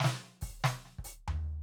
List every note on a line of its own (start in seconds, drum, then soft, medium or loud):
0.00 snare medium
0.04 snare loud
0.23 snare soft
0.41 open hi-hat medium
0.41 kick medium
0.60 hi-hat pedal soft
0.64 snare loud
0.85 snare soft
0.99 kick soft
1.04 open hi-hat loud
1.28 floor tom loud